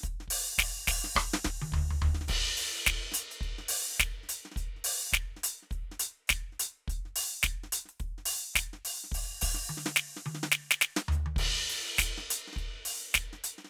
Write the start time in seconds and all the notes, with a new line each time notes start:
0.01 kick, snare, hi-hat pedal, open hi-hat
0.21 snare
0.28 open hi-hat, kick
0.59 open hi-hat, kick, snare
0.88 open hi-hat, kick, snare
1.05 snare
1.16 kick, cross-stick
1.34 snare
1.45 kick, snare
1.62 high tom
1.73 kick, floor tom
1.91 floor tom
2.02 kick, floor tom
2.15 snare
2.21 snare
2.28 kick, snare, hi-hat pedal, ride
2.48 snare
2.58 open hi-hat
2.87 kick, snare, hi-hat pedal
3.12 open hi-hat, snare
3.32 closed hi-hat
3.41 kick, closed hi-hat
3.59 snare
3.69 open hi-hat, snare
3.98 kick, snare, closed hi-hat, hi-hat pedal
4.24 snare
4.29 open hi-hat
4.45 snare
4.52 snare
4.57 closed hi-hat, kick, snare
4.76 kick, snare
4.85 open hi-hat
5.11 kick, snare, closed hi-hat, hi-hat pedal
5.37 snare
5.44 open hi-hat
5.63 snare
5.71 kick, closed hi-hat, hi-hat pedal
5.92 snare
6.00 closed hi-hat
6.28 closed hi-hat, kick, snare, hi-hat pedal
6.53 snare
6.60 closed hi-hat
6.88 closed hi-hat, kick
7.06 snare
7.16 open hi-hat
7.42 closed hi-hat, kick, snare, hi-hat pedal
7.64 kick, snare
7.73 closed hi-hat
7.86 snare, closed hi-hat
8.00 kick, closed hi-hat
8.18 snare
8.26 open hi-hat
8.54 closed hi-hat, kick, snare, hi-hat pedal
8.74 snare
8.85 open hi-hat
9.04 snare
9.12 open hi-hat, kick
9.42 open hi-hat, kick
9.55 snare
9.70 high tom
9.78 snare
9.86 snare
9.97 snare
10.17 snare
10.26 high tom
10.35 snare
10.44 snare
10.52 snare
10.71 snare
10.82 snare
10.97 snare
11.09 floor tom, hi-hat pedal
11.26 high tom
11.37 kick, ride
11.70 open hi-hat
11.97 closed hi-hat, kick, snare, hi-hat pedal
12.18 snare
12.31 closed hi-hat
12.48 snare
12.53 kick, snare
12.59 closed hi-hat
12.76 snare
12.86 open hi-hat
13.12 closed hi-hat, kick, snare, hi-hat pedal
13.33 snare
13.44 closed hi-hat
13.59 snare
13.65 snare